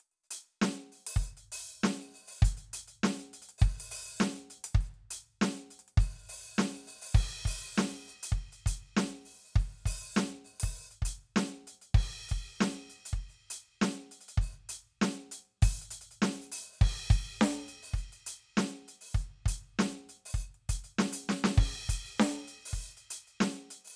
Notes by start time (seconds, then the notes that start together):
0.01 open hi-hat
0.11 open hi-hat
0.24 hi-hat pedal
0.31 closed hi-hat
0.47 closed hi-hat
0.61 snare
0.76 open hi-hat
0.92 open hi-hat
1.07 open hi-hat
1.16 kick
1.22 hi-hat pedal, open hi-hat
1.37 closed hi-hat
1.52 open hi-hat
1.68 open hi-hat
1.83 snare
1.99 open hi-hat
2.14 open hi-hat
2.27 open hi-hat
2.39 kick, hi-hat pedal
2.44 closed hi-hat
2.57 closed hi-hat
2.73 closed hi-hat
2.88 closed hi-hat
3.03 snare
3.19 closed hi-hat
3.33 closed hi-hat
3.42 closed hi-hat
3.49 closed hi-hat
3.58 open hi-hat, kick
3.80 open hi-hat
3.91 open hi-hat
4.05 open hi-hat
4.20 snare, hi-hat pedal
4.36 closed hi-hat
4.50 closed hi-hat
4.64 closed hi-hat
4.75 kick
4.81 hi-hat pedal, open hi-hat
4.94 closed hi-hat
5.11 closed hi-hat
5.27 closed hi-hat
5.41 snare
5.56 closed hi-hat
5.70 closed hi-hat
5.79 closed hi-hat
5.88 closed hi-hat
5.97 open hi-hat, kick
6.29 open hi-hat
6.43 open hi-hat
6.58 snare
6.73 open hi-hat
6.87 open hi-hat
7.02 open hi-hat
7.15 kick, crash
7.29 open hi-hat
7.45 open hi-hat, kick
7.63 open hi-hat
7.78 snare
8.07 open hi-hat, hi-hat pedal
8.23 closed hi-hat
8.32 kick
8.38 closed hi-hat
8.52 closed hi-hat
8.66 closed hi-hat, kick
8.86 closed hi-hat
8.97 snare
9.12 open hi-hat
9.25 open hi-hat
9.34 open hi-hat
9.44 open hi-hat
9.56 open hi-hat, kick
9.86 open hi-hat, kick
10.16 snare, hi-hat pedal
10.44 open hi-hat
10.60 kick, open hi-hat
10.72 kick, open hi-hat
10.91 closed hi-hat
11.02 closed hi-hat, kick
11.21 open hi-hat
11.36 snare
11.67 closed hi-hat
11.81 closed hi-hat
11.94 kick, crash
12.00 hi-hat pedal
12.11 closed hi-hat
12.28 closed hi-hat, kick
12.43 closed hi-hat
12.61 snare
12.90 closed hi-hat
13.05 closed hi-hat
13.13 kick
13.29 hi-hat pedal
13.35 closed hi-hat
13.50 closed hi-hat
13.65 closed hi-hat
13.81 snare
14.11 closed hi-hat
14.21 closed hi-hat
14.28 closed hi-hat
14.37 open hi-hat, kick
14.69 closed hi-hat
14.88 closed hi-hat
15.01 snare
15.31 closed hi-hat
15.45 closed hi-hat
15.62 open hi-hat, kick
15.71 open hi-hat
15.81 closed hi-hat
15.91 closed hi-hat
16.01 closed hi-hat
16.11 closed hi-hat
16.22 snare
16.31 open hi-hat
16.41 open hi-hat
16.52 open hi-hat
16.61 open hi-hat
16.72 open hi-hat
16.81 kick, crash
17.10 closed hi-hat, kick
17.25 closed hi-hat
17.41 snare
17.68 closed hi-hat
17.83 open hi-hat
17.93 kick, hi-hat pedal
17.98 closed hi-hat
18.12 closed hi-hat
18.26 closed hi-hat
18.43 closed hi-hat
18.57 snare
18.88 closed hi-hat
19.01 open hi-hat
19.14 kick
19.19 hi-hat pedal
19.30 closed hi-hat
19.46 closed hi-hat, kick
19.64 closed hi-hat
19.79 snare
20.09 closed hi-hat
20.25 open hi-hat
20.34 kick
20.41 kick, hi-hat pedal
20.54 closed hi-hat
20.69 closed hi-hat, kick
20.84 closed hi-hat
20.98 snare
21.12 open hi-hat
21.29 snare
21.44 snare
21.57 kick, crash
21.89 closed hi-hat, kick
22.05 closed hi-hat
22.20 snare
22.48 closed hi-hat
22.65 open hi-hat
22.73 kick
22.80 open hi-hat
22.88 hi-hat pedal
22.97 closed hi-hat
23.10 closed hi-hat
23.27 closed hi-hat
23.40 snare
23.55 closed hi-hat
23.70 closed hi-hat
23.84 open hi-hat
23.88 open hi-hat